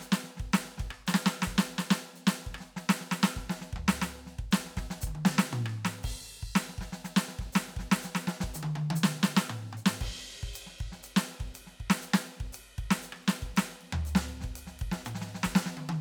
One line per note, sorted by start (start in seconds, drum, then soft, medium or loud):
0.01 snare soft
0.01 hi-hat pedal medium
0.12 snare loud
0.17 cross-stick soft
0.24 snare soft
0.37 kick soft
0.37 snare soft
0.47 kick soft
0.53 snare loud
0.53 hi-hat pedal medium
0.65 snare soft
0.78 kick soft
0.78 snare soft
0.91 cross-stick medium
1.07 snare loud
1.07 hi-hat pedal loud
1.14 snare loud
1.26 snare loud
1.42 snare loud
1.47 kick soft
1.58 snare loud
1.58 hi-hat pedal medium
1.79 snare loud
1.91 snare loud
2.16 hi-hat pedal medium
2.27 snare loud
2.47 kick soft
2.55 cross-stick medium
2.61 snare soft
2.66 hi-hat pedal soft
2.77 snare medium
2.89 snare loud
3.01 snare soft
3.12 snare loud
3.22 snare loud
3.22 hi-hat pedal medium
3.36 kick soft
3.36 snare soft
3.50 snare medium
3.50 hi-hat pedal medium
3.62 snare soft
3.73 kick soft
3.73 floor tom medium
3.88 snare loud
4.02 snare loud
4.02 hi-hat pedal medium
4.27 snare soft
4.39 kick soft
4.39 snare soft
4.52 snare loud
4.52 hi-hat pedal medium
4.66 snare soft
4.77 kick soft
4.77 snare medium
4.83 kick soft
4.86 kick soft
4.91 snare medium
5.01 kick medium
5.01 hi-hat pedal loud
5.07 kick soft
5.07 high tom medium
5.14 kick soft
5.14 high tom medium
5.25 snare loud
5.39 snare loud
5.53 mid tom loud
5.66 cross-stick medium
5.85 snare loud
6.04 kick medium
6.04 hi-hat pedal medium
6.04 crash loud
6.10 kick soft
6.13 kick soft
6.43 kick soft
6.56 snare loud
6.56 hi-hat pedal medium
6.69 snare soft
6.78 kick soft
6.78 snare medium
6.93 snare medium
7.05 snare medium
7.05 hi-hat pedal medium
7.17 snare loud
7.29 snare soft
7.39 kick soft
7.39 snare soft
7.47 kick soft
7.53 snare loud
7.53 hi-hat pedal medium
7.68 snare soft
7.77 kick soft
7.77 snare soft
7.92 snare loud
8.03 snare medium
8.03 hi-hat pedal loud
8.15 snare loud
8.28 snare medium
8.41 kick soft
8.41 snare medium
8.51 kick soft
8.51 hi-hat pedal loud
8.56 high tom medium
8.63 high tom loud
8.76 high tom loud
8.91 high tom loud
8.96 hi-hat pedal loud
9.04 snare loud
9.23 snare loud
9.37 snare loud
9.50 mid tom loud
9.73 mid tom medium
9.77 hi-hat pedal medium
9.86 snare loud
10.01 kick medium
10.01 ride loud
10.07 kick soft
10.13 kick soft
10.21 cross-stick soft
10.21 hi-hat pedal soft
10.35 snare soft
10.40 kick soft
10.40 snare soft
10.54 hi-hat pedal medium
10.54 ride bell medium
10.67 snare soft
10.79 kick soft
10.79 ride soft
10.86 kick soft
10.92 snare soft
11.03 hi-hat pedal medium
11.03 ride medium
11.17 snare loud
11.29 ride soft
11.40 kick soft
11.40 snare soft
11.55 hi-hat pedal medium
11.55 ride medium
11.67 snare soft
11.80 kick soft
11.80 ride soft
11.90 snare loud
12.02 hi-hat pedal medium
12.02 ride medium
12.14 snare loud
12.27 ride soft
12.40 kick soft
12.53 hi-hat pedal loud
12.53 ride loud
12.78 kick soft
12.78 ride soft
12.84 kick soft
12.91 snare loud
13.02 hi-hat pedal medium
13.02 ride medium
13.13 cross-stick medium
13.23 hi-hat pedal soft
13.23 ride soft
13.28 snare loud
13.42 kick soft
13.57 snare loud
13.57 hi-hat pedal medium
13.57 ride medium
13.81 ride soft
13.93 floor tom loud
14.06 hi-hat pedal medium
14.06 ride medium
14.15 snare loud
14.28 hi-hat pedal soft
14.28 ride soft
14.41 kick soft
14.41 snare soft
14.56 hi-hat pedal medium
14.56 ride medium
14.67 snare soft
14.79 kick soft
14.79 ride medium
14.87 kick soft
14.92 snare medium
15.05 hi-hat pedal medium
15.05 mid tom loud
15.15 snare medium
15.21 snare medium
15.27 snare soft
15.35 snare medium
15.44 kick soft
15.44 snare loud
15.56 snare loud
15.56 hi-hat pedal medium
15.66 snare medium
15.77 high tom medium
15.89 high tom loud